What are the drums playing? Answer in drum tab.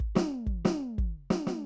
SD |-o--o---oo--|
FT |-o--o---oo--|
BD |o--o--o-----|